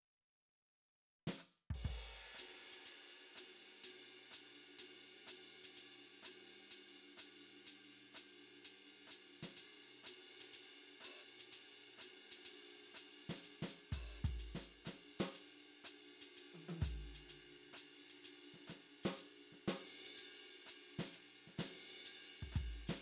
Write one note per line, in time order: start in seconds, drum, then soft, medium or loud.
1.27 snare medium
1.38 hi-hat pedal medium
1.70 kick soft
1.70 ride medium
1.85 kick soft
1.85 crash medium
2.34 hi-hat pedal medium
2.39 ride loud
2.72 ride medium
2.85 ride medium
3.35 hi-hat pedal medium
3.35 ride medium
3.83 hi-hat pedal soft
3.83 ride medium
4.31 hi-hat pedal medium
4.31 ride medium
4.79 ride medium
5.27 hi-hat pedal medium
5.27 ride medium
5.64 ride medium
5.77 ride medium
6.23 hi-hat pedal medium
6.23 ride medium
6.67 hi-hat pedal soft
6.67 ride medium
7.17 hi-hat pedal medium
7.17 ride medium
7.67 ride medium
8.14 hi-hat pedal medium
8.14 ride medium
8.61 hi-hat pedal soft
8.65 ride medium
9.07 hi-hat pedal medium
9.07 ride medium
9.43 snare soft
9.43 ride medium
9.57 ride medium
10.04 hi-hat pedal medium
10.04 ride loud
10.40 ride medium
10.54 ride medium
11.00 hi-hat pedal medium
11.00 ride medium
11.39 ride medium
11.52 ride medium
11.98 hi-hat pedal medium
11.98 ride medium
12.31 ride medium
12.45 ride medium
12.94 hi-hat pedal medium
12.94 ride medium
13.29 snare medium
13.29 ride medium
13.44 ride medium
13.62 snare medium
13.92 kick soft
13.92 hi-hat pedal medium
13.92 ride medium
14.24 kick soft
14.24 ride medium
14.39 hi-hat pedal soft
14.39 ride medium
14.55 snare medium
14.85 snare soft
14.85 hi-hat pedal loud
14.85 ride medium
15.19 snare medium
15.19 ride medium
15.30 hi-hat pedal soft
15.35 ride medium
15.84 hi-hat pedal loud
15.84 ride medium
16.21 ride medium
16.37 ride medium
16.54 high tom soft
16.68 high tom medium
16.81 kick soft
16.81 hi-hat pedal loud
16.81 ride medium
17.15 ride medium
17.27 hi-hat pedal soft
17.27 ride medium
17.73 hi-hat pedal loud
17.73 ride medium
18.10 ride medium
18.17 hi-hat pedal soft
18.24 ride medium
18.54 snare soft
18.67 snare soft
18.67 hi-hat pedal medium
18.67 ride medium
19.03 snare medium
19.03 ride medium
19.14 hi-hat pedal soft
19.14 ride medium
19.52 snare soft
19.68 snare medium
19.68 hi-hat pedal loud
19.68 ride loud
20.05 ride medium
20.15 hi-hat pedal soft
20.15 ride medium
20.66 hi-hat pedal medium
20.66 ride medium
20.99 snare medium
20.99 ride medium
21.13 hi-hat pedal soft
21.13 ride medium
21.47 snare soft
21.58 snare medium
21.58 hi-hat pedal medium
21.58 ride loud
21.93 ride medium
22.03 hi-hat pedal soft
22.03 ride medium
22.42 kick soft
22.52 kick soft
22.52 hi-hat pedal medium
22.52 ride medium
22.87 snare medium
22.87 ride medium
22.98 hi-hat pedal soft